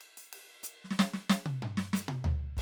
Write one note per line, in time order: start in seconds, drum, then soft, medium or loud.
0.01 ride bell medium
0.17 open hi-hat medium
0.33 ride loud
0.63 hi-hat pedal loud
0.84 snare soft
0.91 snare medium
0.99 snare loud
1.14 snare medium
1.30 snare loud
1.30 hi-hat pedal medium
1.46 high tom loud
1.62 mid tom loud
1.77 snare loud
1.93 snare loud
1.93 hi-hat pedal loud
2.08 high tom loud
2.24 floor tom loud
2.57 kick medium
2.57 ride loud